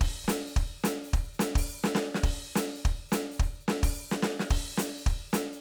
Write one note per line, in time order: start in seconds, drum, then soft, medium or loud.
0.01 kick loud
0.01 crash loud
0.23 kick soft
0.23 hi-hat pedal soft
0.28 closed hi-hat loud
0.28 snare loud
0.47 open hi-hat medium
0.56 open hi-hat medium
0.56 kick loud
0.80 snare loud
0.80 hi-hat pedal soft
0.85 closed hi-hat loud
1.04 open hi-hat medium
1.13 open hi-hat medium
1.13 kick loud
1.34 hi-hat pedal soft
1.39 closed hi-hat loud
1.39 snare loud
1.55 open hi-hat loud
1.55 kick loud
1.84 snare loud
1.84 hi-hat pedal medium
1.95 snare loud
2.15 snare loud
2.24 kick loud
2.24 crash loud
2.53 closed hi-hat loud
2.53 snare loud
2.53 hi-hat pedal soft
2.75 open hi-hat medium
2.84 open hi-hat medium
2.84 kick loud
3.09 closed hi-hat loud
3.09 snare loud
3.09 hi-hat pedal medium
3.31 open hi-hat medium
3.40 open hi-hat medium
3.40 kick loud
3.61 hi-hat pedal soft
3.68 snare loud
3.83 open hi-hat loud
3.83 kick loud
4.12 snare loud
4.12 hi-hat pedal soft
4.23 snare loud
4.40 snare loud
4.50 kick loud
4.50 crash loud
4.74 hi-hat pedal medium
4.78 closed hi-hat loud
4.78 snare loud
4.97 open hi-hat medium
5.06 open hi-hat medium
5.06 kick loud
5.30 closed hi-hat loud
5.30 snare loud
5.30 hi-hat pedal medium
5.53 closed hi-hat medium